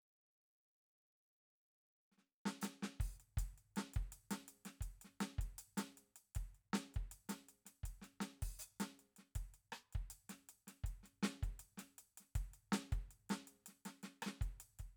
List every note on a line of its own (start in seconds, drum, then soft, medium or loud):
2.12 snare soft
2.18 snare soft
2.45 snare medium
2.61 snare soft
2.61 hi-hat pedal medium
2.83 snare soft
3.00 kick soft
3.00 open hi-hat soft
3.20 closed hi-hat soft
3.37 kick soft
3.37 closed hi-hat medium
3.58 closed hi-hat soft
3.76 snare medium
3.76 closed hi-hat soft
3.94 kick soft
3.94 closed hi-hat soft
4.12 closed hi-hat soft
4.31 snare soft
4.31 closed hi-hat medium
4.48 closed hi-hat soft
4.65 snare soft
4.65 closed hi-hat soft
4.81 kick soft
4.81 closed hi-hat soft
5.01 snare soft
5.01 closed hi-hat soft
5.20 snare medium
5.20 closed hi-hat soft
5.38 kick soft
5.38 closed hi-hat soft
5.58 closed hi-hat medium
5.77 snare medium
5.77 closed hi-hat medium
5.97 closed hi-hat soft
6.16 closed hi-hat soft
6.35 kick soft
6.35 closed hi-hat soft
6.55 closed hi-hat soft
6.73 snare medium
6.73 closed hi-hat soft
6.94 kick soft
6.94 closed hi-hat soft
7.11 closed hi-hat soft
7.29 snare soft
7.29 closed hi-hat medium
7.49 closed hi-hat soft
7.65 snare soft
7.65 closed hi-hat soft
7.83 kick soft
7.83 closed hi-hat soft
8.02 snare soft
8.02 closed hi-hat soft
8.20 snare soft
8.20 closed hi-hat soft
8.42 kick soft
8.42 open hi-hat medium
8.59 closed hi-hat soft
8.59 hi-hat pedal medium
8.80 snare medium
8.80 closed hi-hat medium
8.99 closed hi-hat soft
9.16 snare soft
9.16 closed hi-hat soft
9.35 kick soft
9.35 closed hi-hat soft
9.54 closed hi-hat soft
9.72 cross-stick medium
9.72 closed hi-hat soft
9.93 kick soft
9.93 closed hi-hat soft
10.10 closed hi-hat medium
10.29 snare soft
10.29 closed hi-hat soft
10.49 closed hi-hat soft
10.67 snare soft
10.67 closed hi-hat soft
10.84 kick soft
10.84 closed hi-hat soft
11.03 snare soft
11.03 closed hi-hat soft
11.23 snare medium
11.23 closed hi-hat soft
11.43 kick soft
11.43 closed hi-hat soft
11.59 closed hi-hat soft
11.78 snare soft
11.78 closed hi-hat soft
11.98 closed hi-hat soft
12.17 snare soft
12.17 closed hi-hat soft
12.35 kick soft
12.35 closed hi-hat soft
12.53 closed hi-hat soft
12.72 snare medium
12.72 closed hi-hat soft
12.92 kick soft
12.92 closed hi-hat soft
13.11 closed hi-hat soft
13.29 snare medium
13.29 closed hi-hat soft
13.47 closed hi-hat soft
13.66 snare soft
13.66 closed hi-hat soft
13.85 snare soft
13.85 closed hi-hat soft
14.03 snare soft
14.03 closed hi-hat soft
14.22 cross-stick medium
14.22 closed hi-hat soft
14.26 snare soft
14.41 kick soft
14.41 closed hi-hat soft
14.60 closed hi-hat soft
14.79 kick soft
14.79 closed hi-hat soft